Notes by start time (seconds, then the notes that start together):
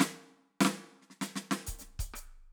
0.00 snare
0.61 snare
0.65 snare
1.02 snare
1.10 snare
1.21 snare, hi-hat pedal
1.36 snare
1.51 snare
1.56 cross-stick
1.67 closed hi-hat, kick
1.79 snare, hi-hat pedal
1.99 closed hi-hat, kick
2.14 cross-stick, hi-hat pedal